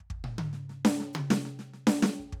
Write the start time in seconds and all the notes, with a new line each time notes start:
0.00 kick
0.10 kick
0.24 mid tom
0.38 high tom
0.53 snare
0.69 snare
0.85 snare
1.00 snare
1.13 hi-hat pedal, high tom
1.30 snare
1.45 snare
1.59 snare
1.74 snare
1.87 snare
2.02 snare
2.19 kick
2.32 kick